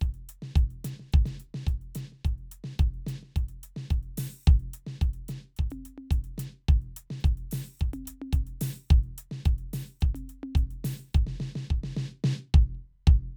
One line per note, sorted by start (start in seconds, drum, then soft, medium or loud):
0.01 kick medium
0.01 closed hi-hat soft
0.01 hi-hat pedal soft
0.10 snare soft
0.16 closed hi-hat soft
0.30 closed hi-hat medium
0.44 snare medium
0.57 kick loud
0.57 closed hi-hat soft
0.72 closed hi-hat soft
0.86 closed hi-hat medium
0.86 kick soft
0.86 snare medium
1.01 snare soft
1.14 kick loud
1.14 closed hi-hat soft
1.27 snare medium
1.27 closed hi-hat soft
1.41 closed hi-hat soft
1.56 snare medium
1.68 kick medium
1.68 closed hi-hat soft
1.83 closed hi-hat soft
1.97 closed hi-hat medium
1.97 snare medium
2.14 snare soft
2.26 kick medium
2.26 closed hi-hat soft
2.40 closed hi-hat soft
2.53 closed hi-hat medium
2.66 snare medium
2.81 kick loud
2.81 closed hi-hat soft
2.95 closed hi-hat soft
3.08 closed hi-hat medium
3.08 snare medium
3.24 snare soft
3.38 kick medium
3.38 closed hi-hat soft
3.50 closed hi-hat soft
3.65 closed hi-hat medium
3.78 snare medium
3.92 kick medium
3.92 closed hi-hat soft
4.04 closed hi-hat soft
4.19 open hi-hat medium
4.19 snare medium
4.47 kick loud
4.47 closed hi-hat soft
4.47 hi-hat pedal soft
4.61 closed hi-hat soft
4.75 closed hi-hat medium
4.88 snare medium
5.03 kick medium
5.03 closed hi-hat soft
5.15 closed hi-hat soft
5.30 closed hi-hat medium
5.30 snare medium
5.58 kick medium
5.58 closed hi-hat soft
5.72 closed hi-hat soft
5.72 high tom medium
5.87 kick soft
5.87 closed hi-hat medium
5.99 high tom medium
6.12 kick medium
6.12 closed hi-hat medium
6.26 closed hi-hat soft
6.40 closed hi-hat medium
6.40 snare medium
6.70 kick loud
6.70 closed hi-hat soft
6.83 closed hi-hat soft
6.98 closed hi-hat loud
7.12 snare medium
7.21 hi-hat pedal soft
7.26 kick loud
7.26 closed hi-hat soft
7.39 closed hi-hat soft
7.53 open hi-hat medium
7.53 snare medium
7.79 kick medium
7.79 closed hi-hat soft
7.79 hi-hat pedal soft
7.95 closed hi-hat soft
7.95 high tom medium
8.07 kick soft
8.07 closed hi-hat loud
8.23 high tom medium
8.34 kick medium
8.34 closed hi-hat medium
8.48 closed hi-hat soft
8.63 open hi-hat loud
8.63 snare medium
8.90 kick loud
8.90 closed hi-hat soft
8.90 hi-hat pedal soft
9.05 closed hi-hat soft
9.19 closed hi-hat loud
9.33 snare medium
9.47 kick medium
9.47 closed hi-hat soft
9.60 closed hi-hat soft
9.75 open hi-hat medium
9.75 snare medium
10.02 kick medium
10.02 closed hi-hat soft
10.02 hi-hat pedal soft
10.16 closed hi-hat soft
10.16 high tom medium
10.31 closed hi-hat medium
10.45 high tom loud
10.57 kick medium
10.57 closed hi-hat soft
10.72 closed hi-hat soft
10.86 open hi-hat medium
10.86 snare medium
11.01 snare soft
11.15 kick loud
11.15 closed hi-hat soft
11.15 hi-hat pedal soft
11.28 snare medium
11.42 snare medium
11.57 snare medium
11.72 kick medium
11.85 snare medium
11.98 snare medium
12.26 snare loud
12.56 kick loud
12.76 kick soft
13.09 kick loud